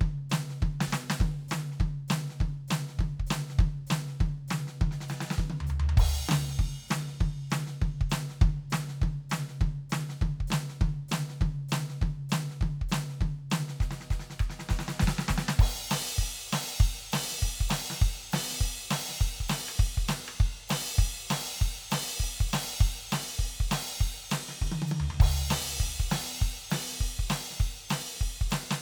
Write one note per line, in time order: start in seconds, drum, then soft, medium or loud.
0.01 kick medium
0.01 high tom loud
0.30 snare loud
0.30 hi-hat pedal medium
0.30 high tom loud
0.50 snare soft
0.62 kick medium
0.62 high tom loud
0.81 snare loud
0.88 kick soft
0.88 hi-hat pedal medium
0.93 snare loud
1.10 snare loud
1.20 kick medium
1.20 high tom loud
1.49 snare loud
1.49 hi-hat pedal medium
1.49 high tom loud
1.72 snare soft
1.80 kick medium
1.80 high tom loud
2.08 snare loud
2.08 hi-hat pedal medium
2.08 high tom loud
2.30 snare soft
2.40 kick medium
2.40 high tom loud
2.68 snare loud
2.68 hi-hat pedal medium
2.68 high tom loud
2.89 snare soft
2.99 kick medium
2.99 high tom loud
3.20 kick medium
3.27 snare loud
3.27 hi-hat pedal medium
3.27 high tom loud
3.49 snare soft
3.59 kick loud
3.59 high tom loud
3.87 snare loud
3.87 hi-hat pedal medium
3.87 high tom loud
4.09 snare soft
4.21 kick medium
4.21 high tom loud
4.48 snare loud
4.48 hi-hat pedal medium
4.48 high tom loud
4.67 snare medium
4.81 kick medium
4.81 high tom loud
4.91 snare medium
5.01 snare medium
5.09 snare medium
5.09 hi-hat pedal medium
5.21 snare loud
5.31 snare loud
5.38 kick medium
5.38 high tom loud
5.50 high tom loud
5.61 floor tom loud
5.67 floor tom loud
5.67 hi-hat pedal medium
5.80 floor tom loud
5.89 floor tom loud
5.97 kick loud
5.97 crash loud
6.28 snare loud
6.28 hi-hat pedal medium
6.28 high tom loud
6.49 snare soft
6.59 kick medium
6.59 high tom medium
6.88 snare loud
6.88 hi-hat pedal medium
6.88 high tom loud
7.08 snare soft
7.21 kick medium
7.21 high tom loud
7.50 snare loud
7.50 hi-hat pedal medium
7.50 high tom loud
7.67 snare medium
7.82 kick medium
7.82 high tom loud
8.01 kick medium
8.10 snare loud
8.10 hi-hat pedal medium
8.10 high tom loud
8.30 snare soft
8.42 kick loud
8.42 high tom loud
8.70 snare loud
8.70 hi-hat pedal medium
8.70 high tom loud
8.89 snare soft
9.02 kick medium
9.02 high tom loud
9.30 snare loud
9.30 hi-hat pedal medium
9.30 high tom loud
9.49 snare soft
9.61 kick medium
9.61 high tom loud
9.90 snare loud
9.90 hi-hat pedal medium
9.90 high tom loud
10.09 snare medium
10.21 kick medium
10.21 high tom loud
10.40 kick medium
10.47 hi-hat pedal medium
10.47 high tom loud
10.52 snare loud
10.69 snare soft
10.81 kick medium
10.81 high tom loud
11.09 snare loud
11.09 hi-hat pedal medium
11.09 high tom loud
11.29 snare soft
11.41 kick medium
11.41 high tom loud
11.69 snare loud
11.69 hi-hat pedal medium
11.69 high tom loud
11.89 snare soft
12.02 kick medium
12.02 high tom loud
12.29 snare loud
12.29 hi-hat pedal medium
12.29 high tom loud
12.51 snare soft
12.61 kick medium
12.61 high tom loud
12.81 kick medium
12.89 snare loud
12.89 hi-hat pedal medium
12.89 high tom loud
13.10 snare soft
13.21 kick medium
13.21 high tom loud
13.50 snare loud
13.50 hi-hat pedal medium
13.50 high tom loud
13.69 snare medium
13.80 kick medium
13.80 snare medium
13.80 hi-hat pedal soft
13.91 snare medium
14.01 snare medium
14.11 kick medium
14.11 snare medium
14.11 hi-hat pedal medium
14.20 snare medium
14.30 snare medium
14.40 kick medium
14.40 cross-stick medium
14.40 hi-hat pedal medium
14.50 snare medium
14.59 snare medium
14.69 kick medium
14.69 snare loud
14.69 hi-hat pedal soft
14.79 snare loud
14.88 snare loud
15.00 kick medium
15.00 snare loud
15.00 hi-hat pedal medium
15.08 snare loud
15.19 snare loud
15.28 kick medium
15.28 snare loud
15.28 hi-hat pedal medium
15.38 snare loud
15.49 snare loud
15.59 kick loud
15.59 crash loud
15.91 snare loud
15.91 hi-hat pedal medium
15.91 crash loud
16.18 kick medium
16.47 hi-hat pedal medium
16.53 snare loud
16.53 crash loud
16.80 kick loud
17.10 snare loud
17.10 hi-hat pedal soft
17.10 crash loud
17.31 snare soft
17.42 kick medium
17.61 kick medium
17.69 snare loud
17.69 hi-hat pedal medium
17.69 crash loud
17.90 snare medium
18.02 kick loud
18.31 snare loud
18.31 hi-hat pedal medium
18.31 crash loud
18.51 snare medium
18.61 kick medium
18.90 snare loud
18.90 hi-hat pedal medium
18.90 crash loud
19.09 snare medium
19.21 kick medium
19.40 kick medium
19.48 snare loud
19.48 hi-hat pedal medium
19.48 crash loud
19.69 cross-stick medium
19.79 kick loud
19.98 kick medium
20.08 snare loud
20.08 hi-hat pedal medium
20.08 crash medium
20.28 cross-stick medium
20.40 kick loud
20.68 snare loud
20.68 hi-hat pedal medium
20.68 crash loud
20.99 kick loud
21.29 snare loud
21.29 hi-hat pedal medium
21.29 crash loud
21.61 kick medium
21.90 snare loud
21.90 hi-hat pedal medium
21.90 crash loud
22.20 kick medium
22.41 kick medium
22.48 hi-hat pedal medium
22.53 snare loud
22.53 crash loud
22.81 kick loud
23.09 snare loud
23.09 hi-hat pedal medium
23.09 crash loud
23.39 kick medium
23.60 kick medium
23.68 snare loud
23.68 hi-hat pedal medium
23.68 crash loud
24.01 kick medium
24.29 snare loud
24.29 hi-hat pedal medium
24.29 crash medium
24.49 snare medium
24.62 kick medium
24.62 high tom medium
24.72 high tom loud
24.82 high tom loud
24.87 hi-hat pedal medium
24.92 high tom loud
25.00 floor tom loud
25.10 floor tom loud
25.10 hi-hat pedal soft
25.20 kick loud
25.20 crash loud
25.49 snare loud
25.49 hi-hat pedal medium
25.49 crash loud
25.72 snare soft
25.80 kick medium
26.00 kick medium
26.09 snare loud
26.09 hi-hat pedal medium
26.09 crash loud
26.42 kick medium
26.70 snare loud
26.70 hi-hat pedal medium
26.70 crash loud
26.91 snare soft
27.01 kick medium
27.19 kick medium
27.28 snare loud
27.28 hi-hat pedal medium
27.28 crash loud
27.51 snare soft
27.60 kick medium
27.89 snare loud
27.89 hi-hat pedal medium
27.89 crash loud
28.21 kick medium
28.41 kick medium
28.49 snare loud
28.49 hi-hat pedal medium
28.49 crash medium
28.71 snare loud